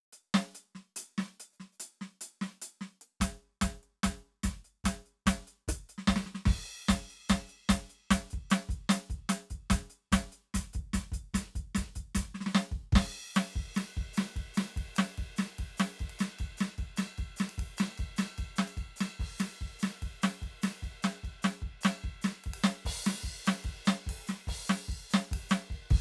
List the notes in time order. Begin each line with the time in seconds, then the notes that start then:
0.13 closed hi-hat
0.34 snare
0.55 closed hi-hat
0.75 snare
0.96 closed hi-hat
1.18 snare
1.32 hi-hat pedal
1.40 closed hi-hat
1.52 hi-hat pedal
1.60 snare
1.72 hi-hat pedal
1.80 closed hi-hat
2.01 snare
2.21 closed hi-hat
2.41 snare
2.62 closed hi-hat
2.81 snare
3.01 closed hi-hat
3.20 closed hi-hat, kick, snare
3.61 closed hi-hat, kick, snare
3.83 closed hi-hat
4.03 closed hi-hat, kick, snare
4.43 closed hi-hat, kick, snare
4.64 closed hi-hat
4.84 closed hi-hat, kick, snare
5.05 closed hi-hat
5.26 closed hi-hat, kick, snare
5.36 kick
5.47 closed hi-hat
5.68 closed hi-hat, kick, cross-stick
5.89 closed hi-hat
5.98 snare
6.07 kick, snare
6.16 kick, snare
6.35 snare
6.45 kick, snare, crash
6.65 closed hi-hat
6.89 closed hi-hat, kick, snare
7.10 closed hi-hat
7.29 closed hi-hat, kick, snare
7.49 closed hi-hat
7.69 closed hi-hat, kick, snare
7.90 closed hi-hat
8.10 closed hi-hat, kick, snare
8.30 closed hi-hat, kick
8.50 closed hi-hat, snare
8.69 closed hi-hat, kick
8.89 closed hi-hat, snare
8.94 snare
9.10 closed hi-hat, kick
9.19 kick
9.29 closed hi-hat, snare
9.50 closed hi-hat, kick
9.70 closed hi-hat, kick, snare
9.90 closed hi-hat
10.12 closed hi-hat, kick, snare
10.32 closed hi-hat
10.54 closed hi-hat, kick, snare
10.73 closed hi-hat, kick
10.93 closed hi-hat, kick, snare
11.12 closed hi-hat, kick
11.34 closed hi-hat, kick, snare
11.55 closed hi-hat, kick
11.75 closed hi-hat, kick, snare
11.95 closed hi-hat, kick
12.15 closed hi-hat, kick, snare
12.29 kick
12.34 snare
12.41 snare
12.46 snare
12.55 snare
12.71 kick
12.92 kick, snare, crash
13.35 snare, hi-hat pedal, ride
13.55 kick, ride
13.74 snare, hi-hat pedal, ride
13.97 kick, ride
14.13 hi-hat pedal
14.17 snare, ride
14.36 kick, ride
14.54 snare, hi-hat pedal, ride
14.76 kick, ride
14.95 snare, hi-hat pedal, ride
15.18 kick, ride
15.36 snare, hi-hat pedal, ride
15.58 kick, ride
15.77 snare, hi-hat pedal, ride
15.99 kick, ride bell
16.10 ride
16.19 snare, hi-hat pedal, ride bell
16.39 kick, ride bell
16.57 snare, hi-hat pedal, ride bell
16.78 kick, ride bell
16.96 snare, hi-hat pedal, ride bell
17.18 kick, ride bell
17.36 snare, hi-hat pedal, ride bell
17.49 ride
17.58 kick
17.77 snare, hi-hat pedal, ride bell
17.98 kick, ride bell
18.16 snare, hi-hat pedal, ride bell
18.38 kick, ride bell
18.56 snare, hi-hat pedal
18.68 ride bell
18.77 kick, ride bell
18.96 hi-hat pedal
19.01 snare, ride bell
19.19 kick, crash
19.38 snare, hi-hat pedal, ride
19.61 kick
19.79 snare, hi-hat pedal
19.83 ride
20.02 kick, ride
20.22 snare, hi-hat pedal, ride
20.42 kick, ride
20.62 snare, hi-hat pedal, ride
20.82 kick, ride bell
21.02 snare, hi-hat pedal, ride bell
21.23 kick, ride bell
21.42 snare, hi-hat pedal
21.53 ride bell
21.62 kick
21.81 snare, hi-hat pedal, ride bell
22.04 kick
22.22 snare, hi-hat pedal, ride bell
22.44 kick, ride
22.54 ride
22.64 snare, hi-hat pedal
22.85 kick, crash
23.03 snare, hi-hat pedal, ride
23.23 kick, ride
23.44 snare, hi-hat pedal, ride
23.64 kick, ride
23.85 snare, hi-hat pedal
24.07 kick, crash
24.27 snare, hi-hat pedal
24.47 kick, crash
24.65 hi-hat pedal
24.69 snare
24.88 kick, crash
25.10 snare, hi-hat pedal
25.31 kick, ride
25.49 snare, hi-hat pedal
25.70 kick, crash
25.90 kick, crash